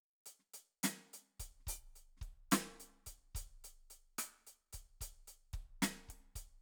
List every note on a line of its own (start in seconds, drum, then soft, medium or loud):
0.26 closed hi-hat soft
0.39 snare soft
0.54 closed hi-hat medium
0.83 closed hi-hat loud
0.83 snare medium
1.13 closed hi-hat medium
1.40 closed hi-hat medium
1.40 kick soft
1.60 snare soft
1.67 open hi-hat medium
1.67 kick soft
1.95 closed hi-hat soft
2.17 snare soft
2.21 kick soft
2.21 closed hi-hat soft
2.51 closed hi-hat loud
2.51 snare medium
2.80 closed hi-hat soft
3.06 closed hi-hat medium
3.06 kick soft
3.35 closed hi-hat medium
3.35 kick soft
3.40 kick soft
3.64 closed hi-hat soft
3.90 closed hi-hat soft
4.18 closed hi-hat medium
4.18 cross-stick medium
4.47 closed hi-hat soft
4.72 closed hi-hat soft
4.72 kick soft
4.72 snare soft
5.01 closed hi-hat medium
5.01 kick soft
5.27 closed hi-hat soft
5.53 kick soft
5.53 snare soft
5.53 closed hi-hat soft
5.82 closed hi-hat medium
5.82 snare medium
6.09 kick soft
6.09 closed hi-hat soft
6.35 closed hi-hat medium
6.35 kick soft